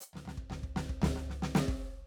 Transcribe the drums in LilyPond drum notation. \new DrumStaff \drummode { \time 4/4 \tempo 4 = 116 hhp16 <tomfh sn>16 <tomfh sn>16 bd16 <tomfh sn>16 bd16 <sn tomfh>16 bd16 <tomfh sn>16 sn16 sn16 sn16 sn16 bd8. | }